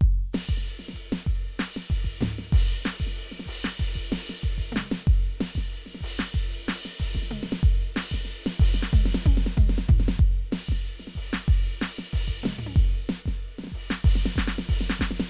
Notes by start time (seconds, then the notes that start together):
0.01 kick, hi-hat pedal, crash
0.33 snare, hi-hat pedal, ride
0.49 kick
0.57 snare
0.64 hi-hat pedal, ride
0.79 snare
0.89 snare
0.94 kick, hi-hat pedal, ride
1.12 snare
1.27 kick, ride
1.43 ride
1.55 kick, hi-hat pedal
1.59 snare, ride
1.76 snare
1.90 kick, ride
2.05 kick
2.21 snare, floor tom, hi-hat pedal
2.39 snare
2.53 kick, ride
2.84 snare, hi-hat pedal, ride
3.00 kick
3.07 snare
3.15 hi-hat pedal, ride
3.32 snare
3.40 snare
3.46 kick, hi-hat pedal, ride
3.64 snare
3.80 kick, ride
3.95 kick, ride
4.10 snare, hi-hat pedal, ride
4.30 snare
4.43 kick, ride
4.58 kick
4.64 ride
4.72 snare, hi-hat pedal, mid tom
4.92 snare
5.07 kick, crash
5.38 snare, hi-hat pedal, ride
5.56 kick, snare
5.71 ride
5.86 snare
5.95 snare
6.01 kick, hi-hat pedal, ride
6.19 snare
6.34 kick, ride
6.50 ride
6.66 kick, snare, hi-hat pedal, ride
6.85 snare
6.99 kick, ride
7.15 kick, snare
7.22 snare
7.30 hi-hat pedal, mid tom
7.43 snare
7.52 snare
7.63 kick, crash
7.95 snare, hi-hat pedal, ride
8.12 kick, snare
8.25 snare, hi-hat pedal, ride
8.46 snare
8.60 kick, ride
8.74 snare
8.83 snare
8.93 kick, mid tom
9.06 snare
9.15 snare
9.26 kick, high tom
9.38 snare
9.47 snare
9.57 kick, mid tom
9.70 snare
9.78 snare
9.89 kick, floor tom
10.00 snare
10.08 snare
10.16 kick, crash
10.20 kick
10.52 snare, hi-hat pedal, ride
10.69 kick, snare
10.84 hi-hat pedal, ride
11.00 snare
11.07 snare
11.16 kick, hi-hat pedal, ride
11.33 snare
11.48 kick, ride
11.63 ride
11.79 snare, hi-hat pedal, ride
11.99 snare
12.13 kick, ride
12.28 kick
12.43 snare, hi-hat pedal, mid tom
12.59 floor tom
12.67 high tom
12.76 kick, crash
13.09 snare, hi-hat pedal, ride
13.26 kick, snare
13.39 hi-hat pedal, ride
13.59 snare
13.64 snare
13.67 snare, hi-hat pedal
13.72 kick, ride
13.90 snare
14.05 kick, ride
14.16 snare
14.36 kick, snare
14.48 snare
14.59 snare
14.69 kick, ride
14.81 snare
14.90 snare
15.00 kick, snare
15.11 snare
15.20 snare